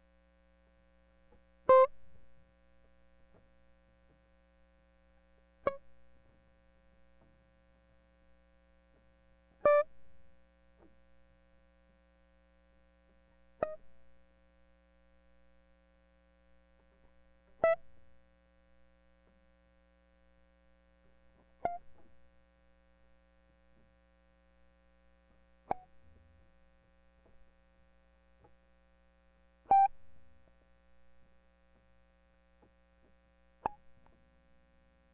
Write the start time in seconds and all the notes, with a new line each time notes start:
1.70 C5
5.67 C#5
9.66 D5
13.63 D#5
17.64 E5
21.66 F5
25.72 G5
29.71 G5
33.66 G#5